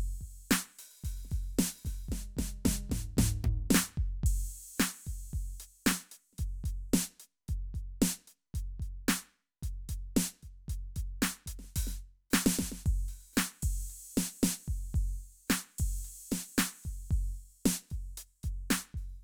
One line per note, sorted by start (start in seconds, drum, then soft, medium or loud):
0.21 kick soft
0.51 snare loud
0.79 open hi-hat medium
1.04 open hi-hat medium
1.04 kick soft
1.25 snare soft
1.31 open hi-hat soft
1.31 kick medium
1.59 open hi-hat medium
1.59 snare loud
1.85 open hi-hat medium
1.85 kick soft
1.85 snare soft
2.09 kick soft
2.09 snare medium
2.13 mid tom soft
2.37 kick soft
2.37 snare medium
2.37 mid tom medium
2.65 kick soft
2.65 snare loud
2.65 mid tom loud
2.90 kick soft
2.90 snare medium
2.90 floor tom medium
3.18 kick medium
3.18 snare loud
3.18 floor tom loud
3.44 kick medium
3.44 floor tom medium
3.71 snare loud
3.71 hi-hat pedal medium
3.75 snare loud
3.98 kick medium
4.24 kick medium
4.24 crash loud
4.77 closed hi-hat medium
4.77 snare loud
4.77 hi-hat pedal medium
5.07 kick soft
5.07 closed hi-hat soft
5.34 kick soft
5.34 closed hi-hat soft
5.60 closed hi-hat medium
5.87 snare loud
5.91 snare soft
6.12 closed hi-hat medium
6.33 snare soft
6.39 closed hi-hat medium
6.39 kick soft
6.64 closed hi-hat medium
6.64 kick soft
6.94 snare loud
7.20 closed hi-hat medium
7.49 closed hi-hat soft
7.49 kick soft
7.75 kick soft
7.75 closed hi-hat soft
8.02 snare loud
8.28 closed hi-hat medium
8.55 closed hi-hat medium
8.55 kick soft
8.80 kick soft
8.80 closed hi-hat soft
9.09 snare loud
9.63 closed hi-hat medium
9.63 kick soft
9.89 closed hi-hat medium
9.89 kick soft
10.17 snare loud
10.43 kick soft
10.43 closed hi-hat soft
10.69 closed hi-hat medium
10.69 kick soft
10.96 closed hi-hat medium
10.96 kick soft
11.22 snare loud
11.47 closed hi-hat loud
11.47 kick soft
11.59 snare soft
11.65 snare soft
11.76 open hi-hat loud
11.76 kick medium
11.87 snare soft
12.31 snare loud
12.31 hi-hat pedal medium
12.46 snare loud
12.59 kick soft
12.59 snare medium
12.72 snare soft
12.86 kick medium
12.86 crash medium
13.09 open hi-hat soft
13.33 hi-hat pedal medium
13.37 snare loud
13.63 kick medium
13.63 crash loud
13.90 closed hi-hat soft
14.18 closed hi-hat loud
14.18 snare loud
14.43 closed hi-hat loud
14.43 snare loud
14.68 kick soft
14.95 kick medium
14.95 crash medium
15.20 open hi-hat soft
15.48 snare loud
15.48 hi-hat pedal soft
15.79 kick medium
15.79 crash loud
16.05 closed hi-hat soft
16.32 closed hi-hat medium
16.32 snare medium
16.58 closed hi-hat loud
16.58 snare loud
16.84 closed hi-hat soft
16.84 kick soft
17.11 kick medium
17.11 crash medium
17.35 closed hi-hat soft
17.66 closed hi-hat loud
17.66 snare loud
17.91 kick soft
17.91 closed hi-hat soft
18.18 closed hi-hat loud
18.44 closed hi-hat medium
18.44 kick soft
18.71 open hi-hat loud
18.71 snare loud
18.95 kick soft
18.95 open hi-hat soft